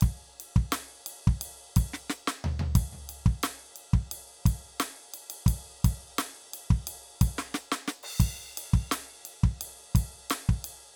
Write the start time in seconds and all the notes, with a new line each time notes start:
0.01 kick, ride
0.40 ride
0.56 kick
0.72 snare, ride
1.06 ride
1.27 kick
1.41 ride
1.76 kick, ride
1.93 snare
2.10 snare
2.27 snare
2.44 floor tom
2.59 floor tom
2.75 kick, ride
2.92 floor tom
3.09 ride
3.26 kick, snare
3.43 snare, ride
3.76 ride
3.93 kick, snare
4.11 ride
4.46 kick, ride
4.80 snare, ride
5.14 ride
5.30 ride
5.46 kick, ride
5.84 kick, ride
6.18 snare, ride
6.54 ride
6.70 kick, snare
6.87 ride
7.21 kick, ride
7.38 snare
7.54 snare
7.72 snare
7.88 snare
8.03 crash
8.20 kick, ride
8.57 ride
8.73 kick
8.91 snare, ride
9.25 ride
9.43 kick
9.61 ride
9.95 kick, ride
10.30 snare, ride
10.49 kick
10.64 ride